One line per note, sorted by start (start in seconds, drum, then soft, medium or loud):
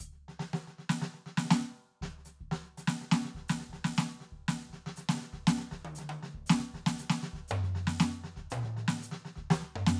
0.01 closed hi-hat medium
0.01 kick soft
0.13 snare soft
0.29 snare soft
0.40 snare medium
0.54 snare medium
0.68 snare soft
0.79 snare soft
0.90 snare loud
0.99 snare soft
1.02 snare medium
1.15 snare soft
1.27 snare soft
1.38 snare loud
1.45 snare soft
1.51 snare loud
1.56 cross-stick soft
1.91 snare soft
2.02 kick soft
2.02 snare medium
2.19 snare soft
2.26 snare soft
2.26 hi-hat pedal medium
2.40 kick soft
2.40 snare soft
2.52 snare medium
2.64 snare soft
2.78 snare soft
2.78 hi-hat pedal medium
2.88 snare loud
3.02 snare soft
3.12 snare loud
3.16 cross-stick medium
3.25 snare soft
3.36 kick soft
3.36 snare soft
3.49 snare loud
3.49 hi-hat pedal medium
3.61 snare soft
3.70 kick soft
3.70 snare soft
3.85 snare medium
3.97 snare loud
3.97 hi-hat pedal medium
4.21 snare soft
4.33 kick soft
4.33 snare soft
4.49 snare loud
4.49 hi-hat pedal medium
4.60 snare soft
4.66 snare soft
4.71 kick soft
4.71 snare soft
4.87 snare medium
4.97 snare soft
4.97 hi-hat pedal medium
5.09 snare loud
5.15 snare soft
5.22 snare soft
5.34 kick soft
5.34 snare soft
5.48 snare loud
5.48 hi-hat pedal medium
5.59 snare soft
5.72 kick soft
5.72 snare medium
5.85 high tom medium
5.96 snare soft
5.96 hi-hat pedal medium
6.10 high tom medium
6.23 snare medium
6.35 kick soft
6.47 snare loud
6.47 hi-hat pedal medium
6.60 snare soft
6.74 kick soft
6.74 snare soft
6.87 snare loud
6.99 snare soft
6.99 hi-hat pedal medium
7.10 snare loud
7.23 snare medium
7.34 kick soft
7.34 snare soft
7.49 hi-hat pedal medium
7.49 floor tom loud
7.64 snare soft
7.76 snare soft
7.88 snare medium
7.99 snare loud
7.99 hi-hat pedal medium
8.16 snare soft
8.24 snare soft
8.37 kick soft
8.37 snare soft
8.51 hi-hat pedal medium
8.51 mid tom loud
8.64 snare soft
8.77 snare soft
8.89 snare loud
8.99 snare soft
8.99 hi-hat pedal medium
9.12 snare medium
9.25 snare soft
9.25 hi-hat pedal soft
9.36 kick soft
9.36 snare soft
9.51 snare loud
9.51 hi-hat pedal medium
9.62 snare soft
9.76 floor tom loud
9.87 snare loud